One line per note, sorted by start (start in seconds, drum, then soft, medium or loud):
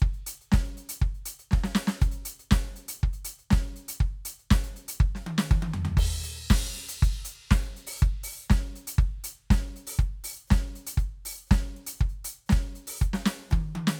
0.01 kick loud
0.01 closed hi-hat soft
0.13 closed hi-hat soft
0.27 closed hi-hat loud
0.41 closed hi-hat soft
0.52 kick loud
0.52 snare loud
0.65 closed hi-hat soft
0.77 closed hi-hat medium
0.89 closed hi-hat loud
1.02 kick loud
1.02 closed hi-hat soft
1.14 closed hi-hat soft
1.23 closed hi-hat loud
1.23 kick soft
1.39 closed hi-hat medium
1.51 kick loud
1.51 snare medium
1.64 snare loud
1.75 snare loud
1.87 snare loud
2.01 closed hi-hat medium
2.01 kick loud
2.11 closed hi-hat medium
2.25 closed hi-hat loud
2.39 closed hi-hat soft
2.51 kick loud
2.51 snare loud
2.73 closed hi-hat medium
2.73 kick soft
2.88 closed hi-hat loud
3.00 kick loud
3.00 closed hi-hat soft
3.13 closed hi-hat soft
3.25 closed hi-hat loud
3.39 closed hi-hat soft
3.51 kick loud
3.51 snare loud
3.63 closed hi-hat soft
3.73 closed hi-hat soft
3.73 kick soft
3.88 closed hi-hat loud
4.00 kick loud
4.00 closed hi-hat soft
4.12 closed hi-hat soft
4.25 closed hi-hat loud
4.39 closed hi-hat soft
4.51 kick loud
4.51 snare loud
4.64 closed hi-hat soft
4.76 closed hi-hat soft
4.88 closed hi-hat loud
5.00 kick loud
5.00 closed hi-hat soft
5.15 snare medium
5.27 high tom loud
5.38 snare loud
5.51 kick loud
5.51 high tom loud
5.62 high tom loud
5.74 floor tom loud
5.85 floor tom loud
5.97 kick loud
5.97 crash loud
6.11 closed hi-hat soft
6.24 closed hi-hat medium
6.50 kick loud
6.50 snare loud
6.50 crash loud
6.75 closed hi-hat soft
6.89 closed hi-hat loud
7.02 closed hi-hat medium
7.02 kick loud
7.13 closed hi-hat soft
7.25 closed hi-hat loud
7.50 kick loud
7.50 snare loud
7.50 hi-hat pedal soft
7.62 closed hi-hat soft
7.76 closed hi-hat soft
7.87 open hi-hat loud
7.98 kick loud
7.98 closed hi-hat soft
7.98 hi-hat pedal soft
8.09 closed hi-hat soft
8.24 open hi-hat loud
8.39 open hi-hat soft
8.44 hi-hat pedal soft
8.50 kick loud
8.50 snare loud
8.76 closed hi-hat medium
8.87 closed hi-hat loud
8.98 kick loud
8.98 closed hi-hat soft
9.11 closed hi-hat soft
9.24 closed hi-hat loud
9.38 closed hi-hat soft
9.50 kick loud
9.50 snare loud
9.63 closed hi-hat soft
9.76 closed hi-hat medium
9.87 open hi-hat loud
9.94 hi-hat pedal soft
9.99 kick loud
9.99 closed hi-hat soft
10.10 closed hi-hat soft
10.24 open hi-hat loud
10.47 snare loud
10.47 hi-hat pedal soft
10.52 kick loud
10.75 closed hi-hat soft
10.87 closed hi-hat loud
10.93 hi-hat pedal soft
10.97 closed hi-hat soft
10.97 kick loud
11.09 closed hi-hat soft
11.25 open hi-hat loud
11.47 hi-hat pedal soft
11.51 kick loud
11.51 snare loud
11.64 closed hi-hat soft
11.77 closed hi-hat soft
11.87 closed hi-hat loud
11.96 closed hi-hat soft
11.96 hi-hat pedal soft
12.01 kick loud
12.09 closed hi-hat soft
12.24 open hi-hat loud
12.39 open hi-hat soft
12.46 snare loud
12.46 hi-hat pedal soft
12.52 kick loud
12.63 closed hi-hat soft
12.75 closed hi-hat soft
12.87 open hi-hat loud
12.99 closed hi-hat medium
12.99 kick loud
12.99 hi-hat pedal soft
13.13 snare loud
13.26 snare loud
13.51 kick loud
13.51 hi-hat pedal medium
13.51 high tom loud
13.75 high tom loud
13.87 snare loud